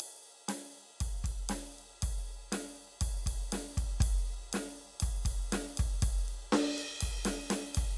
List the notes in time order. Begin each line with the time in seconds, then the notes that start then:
0.00 ride
0.48 snare, ride
1.00 kick, ride
1.24 kick, ride
1.49 snare, ride
1.78 ride
2.02 kick, ride
2.52 snare, ride
3.01 kick, ride
3.26 kick, ride
3.52 snare, ride
3.77 kick, ride
4.00 kick, ride
4.53 snare, ride
5.00 kick, ride
5.25 kick, ride
5.52 snare, ride
5.77 kick, ride
6.02 kick, ride
6.28 ride
6.52 snare, ride
6.78 ride
7.01 kick, ride
7.25 snare, ride
7.50 snare, ride
7.75 kick, ride